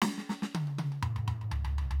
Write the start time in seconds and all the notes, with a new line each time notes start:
0.05 snare
0.18 snare
0.29 snare
0.42 snare
0.55 high tom
0.67 high tom
0.78 high tom
0.92 high tom
1.02 mid tom
1.16 mid tom
1.28 mid tom
1.41 mid tom
1.51 floor tom
1.65 floor tom
1.78 floor tom
1.91 floor tom